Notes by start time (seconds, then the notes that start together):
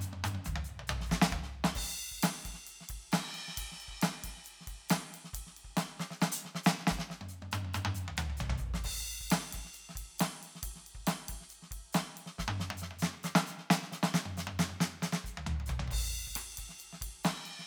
0.01 hi-hat pedal, high tom
0.13 high tom
0.24 hi-hat pedal, high tom
0.35 high tom
0.45 kick, hi-hat pedal, mid tom
0.55 kick, mid tom
0.64 hi-hat pedal
0.69 floor tom
0.80 floor tom
0.87 hi-hat pedal, floor tom
1.01 snare
1.06 kick, hi-hat pedal
1.12 snare
1.16 kick
1.22 snare
1.30 kick, hi-hat pedal, mid tom
1.43 snare
1.55 mid tom
1.64 snare
1.74 kick, hi-hat pedal, crash
1.86 snare
1.89 snare
1.92 snare
2.11 kick
2.23 snare, hi-hat pedal, ride
2.45 kick, ride
2.51 kick, snare
2.67 hi-hat pedal, ride
2.81 snare
2.89 kick, ride
2.96 kick
3.12 snare, hi-hat pedal, ride
3.35 ride
3.48 snare
3.56 kick, hi-hat pedal, ride
3.64 kick
3.67 kick
3.72 snare
3.80 ride
3.88 kick
4.02 snare, hi-hat pedal, ride
4.24 kick, ride
4.30 kick
4.37 snare
4.44 hi-hat pedal, ride
4.61 snare
4.67 kick, ride
4.89 snare, hi-hat pedal, ride
5.14 ride
5.24 snare
5.34 kick, hi-hat pedal, ride
5.40 kick
5.47 snare
5.57 ride
5.65 kick
5.69 kick
5.77 snare, hi-hat pedal, ride
6.00 snare
6.11 snare
6.21 snare, hi-hat pedal
6.32 closed hi-hat
6.45 snare
6.55 snare
6.64 snare, hi-hat pedal
6.78 snare
6.87 snare
6.91 kick, hi-hat pedal
6.98 kick, snare
7.10 snare
7.21 high tom
7.29 hi-hat pedal
7.34 high tom
7.42 high tom
7.52 hi-hat pedal, high tom
7.65 high tom
7.74 hi-hat pedal, high tom
7.85 high tom
7.95 hi-hat pedal
8.08 mid tom
8.17 hi-hat pedal
8.30 mid tom
8.37 kick, floor tom, hi-hat pedal
8.50 floor tom
8.58 kick, hi-hat pedal
8.67 kick
8.74 snare
8.84 kick, hi-hat pedal, crash
8.99 kick, cross-stick
9.21 kick
9.26 kick
9.31 snare, hi-hat pedal, ride
9.38 snare
9.53 kick, ride
9.60 kick
9.65 snare
9.73 hi-hat pedal, ride
9.89 snare
9.95 kick, ride
10.02 kick
10.18 snare, hi-hat pedal, ride
10.43 ride
10.55 snare
10.63 kick, hi-hat pedal, ride
10.70 kick
10.76 snare
10.83 snare, ride
10.95 kick
11.01 kick
11.07 snare, hi-hat pedal, ride
11.29 kick, ride
11.35 kick
11.41 snare
11.49 hi-hat pedal, ride
11.62 snare
11.71 kick, ride
11.77 kick
11.93 snare, hi-hat pedal, ride
12.17 ride
12.26 snare
12.39 kick, snare, hi-hat pedal
12.47 kick, high tom
12.60 snare
12.71 high tom
12.77 hi-hat pedal
12.82 snare
12.91 high tom
12.99 snare, hi-hat pedal
13.14 cross-stick
13.23 snare, hi-hat pedal
13.35 snare
13.47 snare, hi-hat pedal
13.58 snare
13.70 snare, hi-hat pedal
13.83 snare
13.92 snare, hi-hat pedal
14.03 snare
14.14 snare, hi-hat pedal
14.26 high tom
14.37 snare, hi-hat pedal
14.47 high tom
14.59 snare, hi-hat pedal
14.70 high tom
14.81 snare, hi-hat pedal
14.92 cross-stick
15.02 snare, hi-hat pedal
15.13 snare
15.24 kick, hi-hat pedal
15.33 kick
15.37 mid tom
15.47 mid tom
15.60 mid tom
15.66 kick, floor tom, hi-hat pedal
15.74 kick
15.80 floor tom
15.88 kick, hi-hat pedal, crash, floor tom
16.04 kick
16.27 kick
16.36 cross-stick, hi-hat pedal, ride
16.58 kick, ride
16.64 kick
16.69 snare
16.79 hi-hat pedal, ride
16.93 snare
17.01 kick, ride
17.08 kick
17.24 snare, hi-hat pedal, ride
17.46 ride
17.59 snare